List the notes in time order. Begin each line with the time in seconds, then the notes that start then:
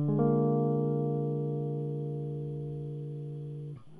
0.00 D3
0.09 G#3
0.20 A#3 F4